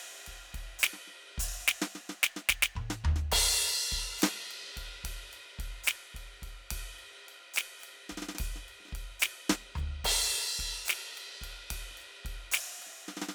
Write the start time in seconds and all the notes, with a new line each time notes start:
0.01 ride
0.11 snare
0.15 snare
0.17 snare
0.27 kick, ride
0.55 kick, ride
0.80 hi-hat pedal
0.84 snare, ride
0.94 snare
1.08 snare
1.38 kick, hi-hat pedal
1.45 kick
1.68 snare
1.82 snare
1.96 snare
2.10 snare
2.24 snare
2.37 snare
2.49 kick, snare
2.63 snare
2.76 kick, mid tom
2.81 kick
2.91 snare
3.05 kick, floor tom
3.16 snare
3.32 kick, crash
3.39 kick
3.75 snare
3.93 kick, ride
3.99 kick
4.19 hi-hat pedal, ride
4.24 snare
4.48 hi-hat pedal, ride
4.64 snare
4.69 snare
4.74 kick, hi-hat pedal, ride
5.05 kick, ride
5.10 kick
5.32 hi-hat pedal, ride
5.59 kick, ride
5.67 kick
5.84 snare, hi-hat pedal, ride
6.15 kick, ride
6.43 kick, ride
6.47 snare
6.59 snare
6.62 snare
6.70 kick, hi-hat pedal, ride
6.99 ride
7.29 ride
7.54 snare, hi-hat pedal, ride
7.80 hi-hat pedal
7.84 ride
7.94 snare
8.10 kick, snare
8.18 snare
8.23 snare
8.29 snare
8.35 snare, ride
8.40 kick, hi-hat pedal
8.47 kick
8.56 snare
8.69 ride
8.81 snare
8.86 snare
8.89 snare
8.93 kick, ride
9.20 snare, hi-hat pedal, ride
9.50 kick, snare
9.76 kick, floor tom, hi-hat pedal
10.05 kick, crash
10.60 kick, ride
10.86 hi-hat pedal, ride
10.90 snare
11.15 hi-hat pedal, ride
11.42 kick, snare, ride
11.71 kick, ride
11.91 snare
11.97 snare, hi-hat pedal, ride
12.01 snare
12.26 kick, ride
12.52 snare, hi-hat pedal, ride
12.79 snare, ride
12.87 snare
13.09 snare
13.17 snare
13.22 snare
13.29 snare